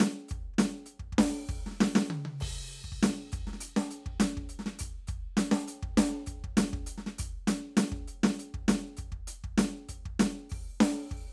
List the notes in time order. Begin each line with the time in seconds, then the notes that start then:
0.00 closed hi-hat, snare
0.29 closed hi-hat, kick
0.54 kick
0.58 closed hi-hat, snare
0.86 closed hi-hat
0.99 kick
1.12 kick
1.18 open hi-hat, snare
1.48 open hi-hat, kick
1.66 snare
1.71 snare
1.80 snare
1.85 hi-hat pedal
1.95 snare
2.10 high tom
2.25 high tom
2.38 hi-hat pedal, crash
2.42 kick
2.70 closed hi-hat
2.84 kick
2.92 kick
3.03 closed hi-hat, snare
3.32 closed hi-hat, kick
3.47 snare
3.53 snare
3.59 closed hi-hat, snare
3.76 snare
3.91 closed hi-hat
4.06 kick
4.20 closed hi-hat, snare
4.37 kick
4.49 closed hi-hat
4.59 snare
4.66 snare
4.73 snare
4.79 closed hi-hat, kick
5.07 closed hi-hat, kick
5.37 closed hi-hat, snare
5.51 snare
5.68 closed hi-hat
5.83 kick
5.97 closed hi-hat, snare
6.26 closed hi-hat, kick
6.44 kick
6.57 closed hi-hat, snare
6.73 kick
6.86 closed hi-hat
6.98 snare
7.06 snare
7.18 closed hi-hat, kick
7.47 closed hi-hat, snare
7.77 closed hi-hat, snare
7.92 kick
8.07 closed hi-hat
8.23 snare
8.39 closed hi-hat
8.54 kick
8.68 closed hi-hat, snare
8.97 closed hi-hat, kick
9.12 kick
9.27 closed hi-hat
9.44 kick
9.58 closed hi-hat, snare
9.89 closed hi-hat, kick
10.05 kick
10.20 closed hi-hat, snare
10.49 open hi-hat, kick
10.80 open hi-hat, snare
11.11 kick